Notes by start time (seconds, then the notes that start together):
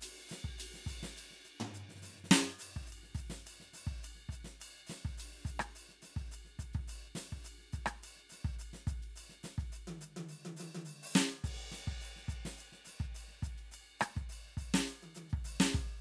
0.01 hi-hat pedal, ride
0.29 snare, hi-hat pedal, ride
0.44 kick, snare
0.58 hi-hat pedal, ride
0.74 snare
0.86 kick, hi-hat pedal, ride
1.03 snare
1.17 hi-hat pedal, ride
1.31 snare
1.45 snare, hi-hat pedal
1.60 floor tom
1.74 hi-hat pedal
1.89 snare
1.96 snare
2.02 snare, hi-hat pedal
2.08 snare
2.12 snare
2.16 snare
2.24 snare
2.31 snare, hi-hat pedal
2.59 hi-hat pedal, ride
2.76 kick
2.87 hi-hat pedal
2.92 ride bell
3.03 snare
3.15 kick, hi-hat pedal, ride
3.30 snare, ride
3.46 hi-hat pedal, ride bell
3.60 snare
3.73 snare, hi-hat pedal, ride
3.87 kick, ride
4.03 hi-hat pedal, ride bell
4.16 snare
4.29 kick, hi-hat pedal, ride
4.45 snare, ride
4.60 hi-hat pedal, ride bell
4.87 snare, hi-hat pedal, ride
5.05 kick, snare
5.18 hi-hat pedal, ride
5.31 snare
5.45 kick, hi-hat pedal, ride
5.60 cross-stick, ride
5.75 hi-hat pedal, ride bell
5.89 snare
6.02 snare, hi-hat pedal, ride
6.16 kick, ride
6.32 hi-hat pedal, ride bell
6.45 snare
6.59 kick, hi-hat pedal, ride
6.73 kick, ride
6.88 hi-hat pedal, ride bell
7.15 snare, hi-hat pedal, ride
7.30 kick, ride
7.44 hi-hat pedal, ride bell
7.59 snare
7.73 kick, hi-hat pedal, ride
7.86 cross-stick, ride
8.03 hi-hat pedal, ride bell
8.17 snare
8.30 snare, hi-hat pedal, ride
8.45 kick, ride
8.59 hi-hat pedal, ride bell
8.73 snare
8.87 kick, hi-hat pedal, ride
9.02 ride
9.16 hi-hat pedal, ride bell
9.30 snare
9.43 snare, hi-hat pedal, ride
9.58 kick, ride
9.72 hi-hat pedal, ride bell
9.87 open hi-hat, high tom
10.01 hi-hat pedal
10.16 open hi-hat, high tom
10.29 hi-hat pedal
10.45 high tom
10.57 hi-hat pedal, high tom
10.75 high tom
10.85 hi-hat pedal
11.02 open hi-hat
11.15 snare, hi-hat pedal
11.44 kick, hi-hat pedal, ride
11.72 snare, hi-hat pedal
11.87 kick, snare
12.01 hi-hat pedal
12.05 ride bell
12.16 snare
12.28 kick, hi-hat pedal
12.33 ride
12.45 snare, ride
12.58 hi-hat pedal, ride bell
12.72 snare
12.85 snare, hi-hat pedal, ride
13.00 kick, ride
13.15 hi-hat pedal, ride bell
13.28 snare
13.43 kick, hi-hat pedal, ride
13.58 ride
13.72 hi-hat pedal, ride bell
14.00 cross-stick, hi-hat pedal
14.16 kick, snare
14.29 hi-hat pedal, ride bell
14.45 snare
14.57 kick, hi-hat pedal, ride
14.73 snare, ride
14.87 hi-hat pedal, ride bell
15.03 high tom
15.15 hi-hat pedal, high tom, ride
15.30 kick, ride
15.45 hi-hat pedal, ride bell
15.60 snare
15.73 kick, hi-hat pedal, ride
15.88 ride